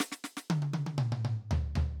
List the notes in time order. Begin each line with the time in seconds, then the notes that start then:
0.00 snare
0.12 snare
0.24 snare
0.37 snare
0.50 high tom
0.62 high tom
0.73 high tom
0.86 high tom
0.98 mid tom
1.12 mid tom
1.25 mid tom
1.51 floor tom
1.75 floor tom